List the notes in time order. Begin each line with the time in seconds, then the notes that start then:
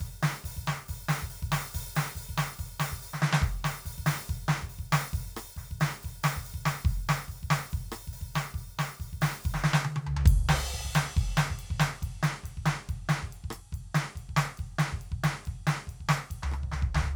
0.01 open hi-hat, kick, snare
0.23 open hi-hat, snare
0.45 open hi-hat, kick
0.49 snare
0.57 kick
0.67 open hi-hat, snare
0.89 open hi-hat, kick
1.09 open hi-hat, snare
1.23 kick
1.30 open hi-hat, snare
1.43 kick
1.52 open hi-hat, snare
1.75 open hi-hat, kick
1.96 open hi-hat, snare
2.16 open hi-hat, kick
2.30 kick
2.38 open hi-hat, snare
2.59 open hi-hat, kick
2.80 open hi-hat, snare
2.92 kick
3.03 open hi-hat
3.14 snare
3.22 snare
3.33 snare
3.42 open hi-hat, kick
3.65 open hi-hat, snare
3.85 open hi-hat, kick, snare
3.98 kick
4.07 open hi-hat, snare
4.26 open hi-hat, kick, snare
4.49 open hi-hat, snare
4.63 kick
4.70 open hi-hat
4.79 kick
4.93 open hi-hat, snare
5.14 open hi-hat, kick
5.37 open hi-hat, cross-stick
5.57 open hi-hat, kick, snare
5.72 kick
5.81 open hi-hat, snare
6.00 open hi-hat, snare
6.05 kick
6.24 open hi-hat, snare
6.37 kick, snare
6.46 open hi-hat
6.54 kick
6.66 open hi-hat, snare
6.85 open hi-hat, kick, snare
7.09 open hi-hat, snare
7.29 open hi-hat, kick
7.43 kick
7.51 open hi-hat, snare
7.71 open hi-hat, kick
7.92 open hi-hat, cross-stick
8.08 kick
8.13 open hi-hat
8.22 kick
8.35 open hi-hat, snare
8.55 open hi-hat, kick
8.79 open hi-hat, snare
9.00 open hi-hat, kick
9.13 kick
9.22 open hi-hat, snare
9.44 open hi-hat, kick
9.55 snare
9.64 snare
9.74 snare
9.85 high tom
9.97 high tom
10.07 floor tom
10.17 floor tom
10.26 kick, ride
10.49 snare, crash
10.74 kick
10.85 kick
10.96 snare, ride
11.09 snare
11.17 kick, ride
11.38 snare, ride
11.51 kick, snare
11.60 ride
11.71 kick
11.80 snare, ride
12.02 kick, snare, ride
12.23 snare, ride
12.44 kick, snare, ride
12.58 kick
12.66 snare, ride
12.88 kick, snare, ride
13.09 snare, ride
13.23 kick, snare
13.33 ride
13.44 kick
13.51 cross-stick, ride
13.73 kick, snare, ride
13.95 snare, ride
14.09 snare
14.16 kick, ride
14.29 kick
14.37 snare, ride
14.52 snare
14.58 kick, ride
14.79 snare, ride
14.93 kick, snare
15.02 ride
15.12 kick
15.24 snare, ride
15.43 snare, ride
15.48 kick
15.67 snare, ride
15.83 snare
15.88 kick, ride
16.01 kick
16.09 snare, ride
16.31 kick, ride
16.43 snare, floor tom
16.52 cross-stick, floor tom
16.64 kick
16.72 snare, floor tom
16.83 kick
16.95 snare, floor tom
17.01 kick